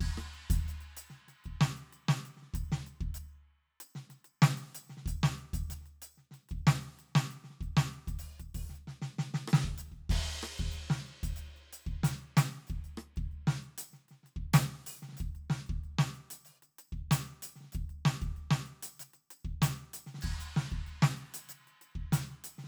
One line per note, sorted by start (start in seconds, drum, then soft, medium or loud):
0.01 kick medium
0.01 crash medium
0.18 cross-stick medium
0.34 percussion soft
0.50 kick medium
0.50 percussion loud
0.67 snare soft
0.67 percussion medium
0.81 percussion soft
0.97 percussion medium
1.10 snare soft
1.28 snare soft
1.28 percussion soft
1.44 kick soft
1.44 percussion soft
1.61 snare loud
1.77 percussion soft
1.93 percussion soft
2.09 snare medium
2.26 percussion soft
2.37 snare soft
2.43 snare soft
2.48 snare soft
2.54 kick medium
2.54 percussion medium
2.72 snare medium
2.87 percussion soft
3.01 kick medium
3.01 percussion soft
3.15 percussion medium
3.81 percussion medium
3.95 snare soft
4.10 snare soft
4.10 percussion soft
4.25 percussion soft
4.42 snare loud
4.58 percussion medium
4.75 percussion medium
4.90 snare soft
4.97 snare soft
5.02 kick medium
5.02 snare soft
5.08 percussion medium
5.23 snare medium
5.38 percussion soft
5.54 kick medium
5.54 percussion medium
5.70 snare soft
5.70 percussion medium
5.81 snare soft
5.86 percussion soft
6.02 percussion medium
6.18 snare soft
6.31 snare soft
6.31 percussion soft
6.49 kick soft
6.49 percussion soft
6.67 snare loud
6.82 percussion soft
6.99 percussion soft
7.15 snare loud
7.31 percussion soft
7.44 snare soft
7.51 snare soft
7.56 snare soft
7.61 kick soft
7.61 percussion soft
7.77 snare loud
7.93 percussion soft
8.08 kick medium
8.08 percussion medium
8.19 percussion medium
8.24 snare soft
8.40 kick soft
8.40 percussion soft
8.55 kick soft
8.55 percussion medium
8.70 snare soft
8.74 percussion soft
8.88 snare soft
9.02 snare medium
9.19 snare medium
9.34 snare medium
9.48 cross-stick medium
9.53 snare loud
9.64 kick medium
9.78 percussion medium
9.92 kick soft
10.10 kick medium
10.10 crash medium
10.10 ride loud
10.43 cross-stick medium
10.58 kick medium
10.58 percussion soft
10.72 percussion soft
10.74 percussion soft
10.90 snare medium
11.06 percussion soft
11.23 kick medium
11.23 percussion medium
11.36 percussion medium
11.56 percussion soft
11.73 percussion medium
11.87 kick medium
12.04 snare loud
12.04 percussion loud
12.10 snare soft
12.37 snare loud
12.37 percussion loud
12.53 snare soft
12.57 snare soft
12.67 percussion soft
12.69 kick medium
12.69 percussion soft
12.84 percussion soft
12.98 cross-stick medium
13.16 kick medium
13.16 percussion soft
13.32 percussion soft
13.47 snare loud
13.63 percussion soft
13.78 percussion loud
13.93 snare soft
14.09 snare soft
14.09 percussion soft
14.23 snare soft
14.23 percussion soft
14.36 kick soft
14.54 snare loud
14.54 percussion loud
14.58 cross-stick medium
14.62 snare soft
14.66 snare soft
14.69 snare soft
14.87 percussion loud
15.02 snare soft
15.09 snare soft
15.13 snare soft
15.16 snare soft
15.16 percussion medium
15.20 kick medium
15.20 percussion soft
15.35 percussion soft
15.50 snare medium
15.67 kick medium
15.67 percussion soft
15.84 percussion soft
15.99 snare medium
16.15 percussion soft
16.31 percussion medium
16.45 snare soft
16.45 percussion soft
16.57 snare soft
16.63 percussion soft
16.79 percussion medium
16.92 kick soft
17.11 snare medium
17.11 percussion loud
17.43 percussion loud
17.56 snare soft
17.61 snare soft
17.64 snare soft
17.72 kick medium
17.72 snare soft
17.72 percussion medium
17.90 percussion soft
18.05 snare loud
18.22 kick medium
18.22 percussion soft
18.37 percussion soft
18.51 snare medium
18.66 percussion soft
18.83 percussion loud
19.00 snare soft
19.00 percussion medium
19.14 snare soft
19.14 percussion soft
19.31 percussion medium
19.45 kick medium
19.62 snare medium
19.62 percussion loud
19.68 snare soft
19.94 percussion loud
20.07 snare soft
20.15 snare soft
20.19 snare soft
20.19 percussion medium
20.19 crash medium
20.24 kick medium
20.40 percussion medium
20.57 snare medium
20.71 kick medium
20.71 percussion soft
20.87 percussion soft
21.02 snare loud
21.17 percussion soft
21.34 percussion loud
21.49 snare soft
21.49 percussion medium
21.60 snare soft
21.67 percussion soft
21.82 percussion soft
21.96 kick soft
22.13 snare loud
22.13 percussion loud
22.31 snare soft
22.44 percussion medium
22.59 snare soft
22.64 snare soft